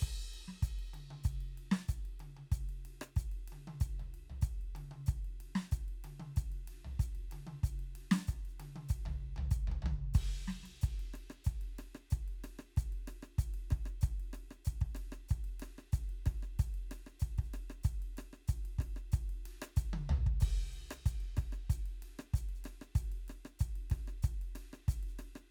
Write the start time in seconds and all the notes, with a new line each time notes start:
0.01 kick, hi-hat pedal, ride
0.19 ride
0.34 ride
0.48 snare
0.63 kick, hi-hat pedal, ride
0.79 ride
0.85 hi-hat pedal
0.94 high tom, ride
1.11 high tom
1.24 kick, hi-hat pedal, ride
1.41 ride
1.58 ride
1.72 snare
1.89 kick, hi-hat pedal, ride
2.06 ride
2.20 high tom, ride
2.37 high tom
2.52 kick, hi-hat pedal, ride
2.69 ride
2.85 ride
3.01 cross-stick
3.16 kick, hi-hat pedal, ride
3.32 ride
3.48 ride
3.52 high tom
3.68 high tom
3.80 kick, hi-hat pedal
3.85 ride
4.00 floor tom, ride
4.14 ride
4.30 floor tom
4.42 kick, hi-hat pedal, ride
4.61 ride
4.75 high tom, ride
4.91 high tom
5.07 kick, hi-hat pedal, ride
5.25 ride
5.41 ride
5.55 snare
5.72 kick, hi-hat pedal, ride
5.88 ride
6.04 high tom, ride
6.20 high tom
6.36 kick, hi-hat pedal, ride
6.52 ride
6.68 ride
6.85 floor tom
7.00 kick, hi-hat pedal, ride
7.15 ride
7.32 high tom, ride
7.47 high tom
7.64 kick, hi-hat pedal, ride
7.80 ride
7.96 ride
8.11 snare
8.28 kick, hi-hat pedal, ride
8.45 hi-hat pedal, ride
8.60 high tom, ride
8.76 high tom
8.89 kick, hi-hat pedal, ride
9.06 floor tom, high tom
9.36 floor tom, high tom
9.51 kick, hi-hat pedal
9.68 floor tom
9.72 high tom
9.82 floor tom, high tom
10.14 kick, hi-hat pedal, crash, ride
10.48 snare, ride
10.63 snare, ride
10.82 kick, hi-hat pedal, ride
11.00 ride
11.14 cross-stick, ride
11.30 cross-stick
11.45 kick, hi-hat pedal, ride
11.61 ride
11.79 cross-stick, ride
11.95 cross-stick
12.11 kick, hi-hat pedal, ride
12.28 ride
12.44 cross-stick, ride
12.59 cross-stick
12.77 kick, hi-hat pedal, ride
12.93 ride
13.08 cross-stick, ride
13.23 cross-stick
13.39 kick, hi-hat pedal, ride
13.54 ride
13.71 kick, cross-stick, ride
13.86 cross-stick
14.01 kick, hi-hat pedal, ride
14.20 ride
14.33 cross-stick, ride
14.51 cross-stick
14.65 kick, hi-hat pedal, ride
14.81 kick, ride
14.95 cross-stick, ride
15.12 cross-stick
15.29 kick, hi-hat pedal, ride
15.45 ride
15.60 cross-stick, ride
15.78 cross-stick
15.93 kick, hi-hat pedal, ride
16.10 ride
16.26 kick, cross-stick, ride
16.43 cross-stick
16.59 kick, hi-hat pedal, ride
16.74 ride
16.91 cross-stick, ride
17.07 cross-stick
17.20 kick, hi-hat pedal, ride
17.38 kick, ride
17.44 hi-hat pedal
17.54 cross-stick, ride
17.70 cross-stick
17.84 kick, hi-hat pedal, ride
18.02 ride
18.17 cross-stick, ride
18.33 cross-stick
18.48 kick, hi-hat pedal, ride
18.65 ride
18.79 kick, cross-stick, ride
18.96 cross-stick
19.12 kick, hi-hat pedal, ride
19.30 ride
19.46 ride
19.62 cross-stick
19.77 kick, hi-hat pedal, ride
19.93 high tom
20.10 floor tom
20.27 kick
20.40 kick, hi-hat pedal, crash, ride
20.74 ride
20.91 cross-stick
21.06 kick, hi-hat pedal, ride
21.21 ride
21.37 kick, cross-stick, ride
21.53 cross-stick
21.70 kick, hi-hat pedal, ride
21.86 ride
22.03 ride
22.19 cross-stick
22.34 kick, hi-hat pedal, ride
22.49 ride
22.55 hi-hat pedal
22.64 cross-stick, ride
22.82 cross-stick
22.95 kick, hi-hat pedal, ride
23.12 ride
23.28 cross-stick, ride
23.45 cross-stick
23.59 kick, hi-hat pedal, ride
23.76 ride
23.90 kick, cross-stick, ride
24.08 cross-stick
24.23 kick, hi-hat pedal, ride
24.42 ride
24.55 cross-stick, ride
24.73 cross-stick
24.88 kick, hi-hat pedal, ride
25.03 ride
25.09 hi-hat pedal
25.19 cross-stick, ride
25.36 cross-stick